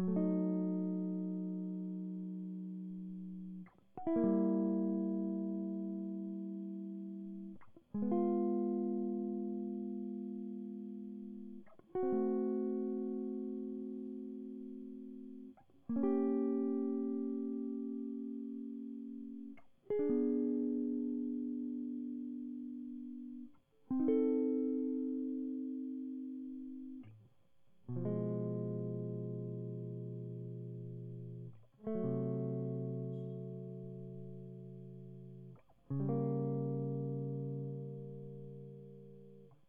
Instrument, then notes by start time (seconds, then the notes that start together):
electric guitar
0.00 F#3
0.08 A3
0.17 D#4
4.07 E4
4.17 A#3
4.24 G3
7.95 G#3
8.03 B3
8.12 F4
11.95 F#4
12.03 C4
12.13 A3
15.90 A#3
15.96 C#4
16.03 G4
19.91 G#4
20.00 D4
20.10 B3
23.91 C4
24.00 D#4
24.08 A4
27.90 B2
27.97 F3
28.06 G#3
31.87 A3
31.96 F#3
32.05 C3
35.92 C#3
36.01 G3
36.09 A#3